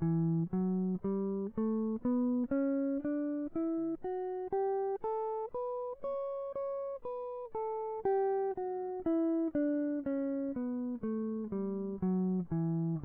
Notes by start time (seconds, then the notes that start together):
0.04 E3
0.54 F#3
1.05 G3
1.59 A3
2.06 B3
2.52 C#4
3.09 D4
3.57 E4
4.05 F#4
4.53 G4
5.04 A4
5.55 B4
6.05 C#5
7.05 B4
7.55 A4
8.06 G4
8.58 F#4
9.07 E4
9.56 D4
10.07 C#4
10.57 B3
11.04 A3
11.53 G3
12.03 F#3
12.53 E3